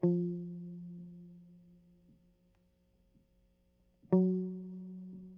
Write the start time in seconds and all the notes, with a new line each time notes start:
0.04 F3
4.13 F#3